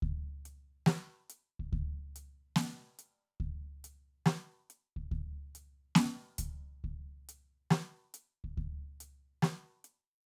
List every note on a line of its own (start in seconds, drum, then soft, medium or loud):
0.03 kick medium
0.03 crash soft
0.03 ride soft
0.46 closed hi-hat soft
0.87 snare loud
1.30 closed hi-hat medium
1.60 kick soft
1.73 kick medium
1.79 ride soft
2.16 closed hi-hat medium
2.56 snare loud
2.99 closed hi-hat medium
3.41 kick medium
3.45 crash soft
3.85 closed hi-hat medium
4.26 snare loud
4.71 closed hi-hat soft
4.97 kick soft
5.12 kick medium
5.12 crash soft
5.16 ride soft
5.56 closed hi-hat medium
5.96 snare loud
6.39 kick medium
6.39 closed hi-hat medium
6.84 kick medium
6.84 crash soft
7.29 closed hi-hat medium
7.71 snare loud
8.14 closed hi-hat medium
8.44 kick soft
8.58 kick medium
8.58 crash soft
9.01 closed hi-hat medium
9.43 snare loud
9.85 closed hi-hat soft